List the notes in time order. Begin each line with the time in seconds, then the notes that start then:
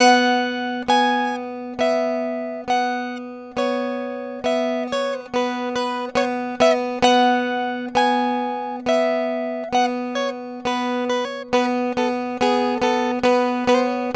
0.00 B3 F#5
0.89 B3 G#5
1.80 B3 E5
2.69 B3 F#5
3.58 B3 C#5
4.45 B3 E5
4.93 B3 C#5
5.14 C5
5.34 B3 B4
5.76 B3 B4
6.16 B3 C#5
6.61 B3 E5
7.03 B3 F#5
7.96 B3 G#5
8.87 B3 E5
9.73 B3 F#5
10.16 C#5
10.66 B3 B4
11.10 B4
11.26 C#5
11.54 B3 B4
11.98 B3 A4
12.42 B3 G#4
12.83 B3 A4
13.24 B3 B4
13.69 B3 B4
13.80 C#5